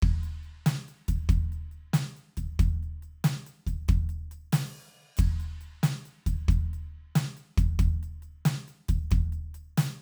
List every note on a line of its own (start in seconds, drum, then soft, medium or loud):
0.01 kick loud
0.01 crash medium
0.24 percussion soft
0.43 percussion soft
0.66 snare loud
0.66 percussion loud
0.88 percussion soft
1.08 kick loud
1.08 percussion medium
1.29 kick loud
1.29 percussion medium
1.52 percussion soft
1.72 percussion soft
1.94 snare loud
1.94 percussion loud
2.17 percussion soft
2.37 kick medium
2.37 percussion medium
2.60 kick loud
2.60 percussion medium
2.83 percussion soft
3.03 percussion soft
3.24 snare loud
3.24 percussion loud
3.47 percussion medium
3.67 kick medium
3.67 percussion medium
3.89 kick loud
3.89 percussion medium
4.09 percussion soft
4.32 percussion medium
4.53 snare loud
4.53 percussion loud
5.17 kick loud
5.17 percussion loud
5.17 crash medium
5.40 percussion soft
5.61 percussion soft
5.83 snare loud
5.83 percussion loud
6.06 percussion soft
6.27 kick medium
6.27 percussion medium
6.49 kick loud
6.49 percussion medium
6.74 percussion soft
7.16 snare loud
7.16 percussion loud
7.37 percussion soft
7.58 kick loud
7.58 percussion medium
7.79 kick loud
7.79 percussion medium
8.03 percussion soft
8.23 percussion soft
8.46 snare loud
8.46 percussion loud
8.68 percussion soft
8.89 kick loud
8.89 percussion medium
9.11 kick loud
9.11 percussion medium
9.33 percussion soft
9.55 percussion medium
9.78 snare loud
9.78 percussion loud